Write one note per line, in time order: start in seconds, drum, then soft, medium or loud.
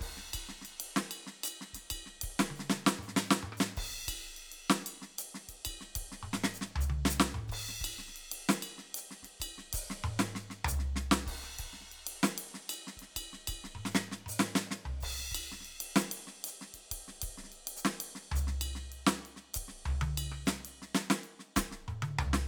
0.01 kick soft
0.01 crash medium
0.07 kick soft
0.17 snare soft
0.34 kick soft
0.34 ride bell loud
0.49 snare soft
0.62 snare soft
0.62 ride bell medium
0.80 ride loud
0.96 snare loud
1.11 ride bell loud
1.27 snare soft
1.44 hi-hat pedal loud
1.44 ride bell loud
1.61 snare soft
1.74 kick soft
1.74 snare soft
1.74 ride bell medium
1.91 kick soft
1.91 ride bell loud
2.06 snare soft
2.22 kick soft
2.22 ride loud
2.29 kick soft
2.39 snare loud
2.50 high tom medium
2.56 snare medium
2.56 hi-hat pedal soft
2.70 snare loud
2.87 snare loud
2.99 hi-hat pedal soft
2.99 mid tom medium
3.08 snare medium
3.17 snare loud
3.25 hi-hat pedal soft
3.31 snare loud
3.43 mid tom medium
3.53 cross-stick medium
3.57 snare loud
3.57 hi-hat pedal medium
3.75 kick soft
3.75 hi-hat pedal soft
3.75 crash loud
3.90 kick soft
4.08 kick soft
4.08 ride bell loud
4.37 ride medium
4.52 ride medium
4.70 snare loud
4.86 ride bell medium
5.02 snare soft
5.18 hi-hat pedal loud
5.18 ride loud
5.35 snare medium
5.49 kick soft
5.49 ride medium
5.65 kick soft
5.65 hi-hat pedal soft
5.65 ride bell loud
5.81 snare soft
5.96 kick soft
5.96 ride loud
6.02 kick soft
6.12 snare soft
6.23 mid tom medium
6.33 snare loud
6.44 snare loud
6.54 hi-hat pedal medium
6.61 snare medium
6.76 floor tom loud
6.81 hi-hat pedal medium
6.90 high tom loud
7.05 snare loud
7.10 hi-hat pedal loud
7.20 snare loud
7.29 snare soft
7.35 mid tom loud
7.40 cross-stick soft
7.48 kick soft
7.48 hi-hat pedal soft
7.52 crash loud
7.69 snare soft
7.81 kick soft
7.81 ride bell loud
7.99 snare soft
8.08 snare soft
8.16 ride medium
8.32 ride loud
8.49 snare loud
8.49 hi-hat pedal medium
8.63 ride bell loud
8.78 snare soft
8.95 hi-hat pedal loud
8.95 ride loud
9.11 snare soft
9.23 kick soft
9.23 snare soft
9.23 ride medium
9.40 kick soft
9.40 hi-hat pedal soft
9.40 ride bell loud
9.58 snare soft
9.73 kick soft
9.73 hi-hat pedal loud
9.73 ride loud
9.90 snare medium
10.04 mid tom loud
10.19 snare loud
10.35 snare medium
10.50 snare medium
10.65 kick soft
10.65 hi-hat pedal loud
10.65 floor tom loud
10.79 snare soft
10.96 snare medium
11.12 snare loud
11.27 kick soft
11.27 crash medium
11.33 kick soft
11.44 cross-stick soft
11.59 kick soft
11.59 snare soft
11.59 ride medium
11.59 floor tom soft
11.73 snare soft
11.81 snare soft
11.88 snare soft
11.92 ride medium
12.07 ride loud
12.23 snare loud
12.23 hi-hat pedal medium
12.38 ride loud
12.54 snare soft
12.70 hi-hat pedal medium
12.70 ride bell loud
12.87 snare medium
12.97 kick soft
12.97 ride medium
13.02 snare soft
13.16 kick soft
13.16 hi-hat pedal soft
13.16 ride bell loud
13.33 snare soft
13.48 kick soft
13.48 ride bell loud
13.55 kick soft
13.64 snare soft
13.75 mid tom medium
13.85 snare medium
13.91 snare loud
13.91 hi-hat pedal soft
14.12 snare medium
14.26 hi-hat pedal loud
14.26 mid tom medium
14.40 snare loud
14.55 snare loud
14.71 snare medium
14.85 floor tom medium
15.01 kick soft
15.01 hi-hat pedal soft
15.01 crash loud
15.19 snare soft
15.32 kick soft
15.32 ride bell loud
15.52 snare soft
15.61 snare soft
15.65 ride medium
15.81 ride loud
15.96 snare loud
15.96 hi-hat pedal medium
16.12 ride loud
16.27 snare soft
16.44 hi-hat pedal medium
16.44 ride loud
16.61 snare soft
16.74 kick soft
16.74 snare soft
16.74 ride medium
16.91 kick soft
16.91 hi-hat pedal soft
16.91 ride loud
17.08 snare soft
17.22 kick soft
17.22 ride loud
17.29 kick soft
17.38 snare soft
17.44 snare soft
17.49 snare soft
17.49 ride soft
17.67 ride loud
17.77 hi-hat pedal loud
17.85 snare loud
18.00 ride loud
18.15 snare soft
18.32 floor tom loud
18.36 hi-hat pedal loud
18.47 snare medium
18.61 ride bell loud
18.75 snare soft
18.92 ride medium
19.07 snare loud
19.25 hi-hat pedal soft
19.25 ride soft
19.37 snare soft
19.54 kick soft
19.54 hi-hat pedal loud
19.54 ride loud
19.62 kick soft
19.68 snare soft
19.86 floor tom loud
20.01 high tom loud
20.18 ride bell loud
20.32 cross-stick medium
20.46 snare loud
20.46 hi-hat pedal soft
20.65 hi-hat pedal soft
20.65 ride medium
20.82 snare soft
20.95 snare loud
21.10 snare loud
21.24 ride soft
21.40 snare soft
21.56 kick soft
21.56 snare loud
21.56 hi-hat pedal loud
21.64 kick soft
21.72 snare soft
21.88 mid tom loud
22.03 high tom loud
22.19 floor tom loud
22.33 snare medium